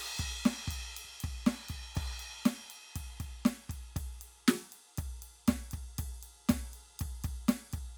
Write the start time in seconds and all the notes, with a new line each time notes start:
0.17 kick, ride, percussion
0.46 snare, ride
0.68 kick, ride, percussion
0.97 ride
1.05 kick
1.21 kick, ride
1.47 snare, ride
1.69 kick, ride
1.96 kick, ride
2.20 ride
2.46 snare, ride
2.71 ride
2.96 kick, ride
3.21 kick, ride
3.46 snare, ride
3.70 kick, ride
3.97 kick, ride
4.22 ride
4.49 snare, ride
4.73 ride
4.98 kick, ride
5.23 ride
5.49 kick, snare, ride
5.72 kick, ride
5.99 kick, ride
6.24 ride
6.50 kick, snare, ride
6.74 ride
7.00 kick, ride
7.25 kick, ride
7.49 snare, ride
7.74 kick, ride